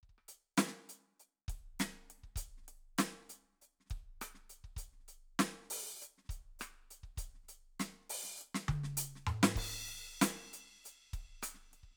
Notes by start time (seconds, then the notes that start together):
0.04 kick
0.09 kick
0.18 cross-stick
0.28 closed hi-hat
0.57 open hi-hat, snare, hi-hat pedal
0.68 snare
0.89 closed hi-hat
1.20 open hi-hat, hi-hat pedal
1.48 kick, snare, closed hi-hat
1.79 open hi-hat, snare, hi-hat pedal
2.10 closed hi-hat
2.23 kick
2.36 closed hi-hat, kick
2.57 snare
2.62 snare
2.68 closed hi-hat
2.98 closed hi-hat, snare
3.29 closed hi-hat
3.61 open hi-hat, hi-hat pedal
3.80 snare
3.85 snare
3.90 kick, closed hi-hat
3.99 kick
4.21 open hi-hat, cross-stick, hi-hat pedal
4.34 snare
4.49 closed hi-hat
4.64 kick
4.76 closed hi-hat, kick
4.92 snare
4.99 snare
5.08 closed hi-hat
5.39 closed hi-hat, snare
5.63 snare
5.70 open hi-hat
6.01 closed hi-hat, hi-hat pedal
6.18 snare
6.25 snare
6.29 closed hi-hat, kick
6.59 closed hi-hat, cross-stick, hi-hat pedal
6.90 closed hi-hat
7.03 kick
7.15 closed hi-hat, kick, snare
7.34 snare
7.43 snare
7.48 closed hi-hat
7.79 closed hi-hat, snare
8.01 snare
8.09 open hi-hat
8.23 snare
8.28 snare
8.38 closed hi-hat, hi-hat pedal
8.54 snare
8.68 kick, high tom
8.75 kick
8.78 kick
8.83 snare
8.97 closed hi-hat
9.15 snare
9.27 mid tom
9.43 snare
9.55 kick, crash
9.64 kick
9.69 snare
9.88 closed hi-hat
10.21 open hi-hat, snare, hi-hat pedal
10.33 snare
10.46 snare
10.53 closed hi-hat
10.84 closed hi-hat, hi-hat pedal
11.13 kick, closed hi-hat
11.42 closed hi-hat, cross-stick, hi-hat pedal
11.54 snare
11.71 snare, closed hi-hat
11.83 kick
11.91 snare